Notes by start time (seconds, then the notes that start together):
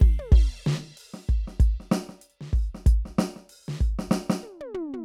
0.01 kick, ride
0.20 high tom
0.33 kick, crash
0.67 snare, hi-hat pedal
0.75 snare
0.98 open hi-hat
1.15 snare
1.30 kick, closed hi-hat
1.48 snare
1.61 closed hi-hat, kick
1.81 snare
1.93 snare
2.10 snare
2.22 closed hi-hat
2.31 open hi-hat
2.42 snare
2.54 kick, snare, open hi-hat
2.68 hi-hat pedal
2.76 snare
2.87 closed hi-hat, kick
3.06 kick, snare
3.19 snare
3.37 snare
3.50 open hi-hat
3.69 snare
3.81 kick, open hi-hat
4.00 snare
4.08 kick
4.12 snare
4.31 snare
4.43 mid tom
4.61 high tom
4.75 floor tom
4.94 floor tom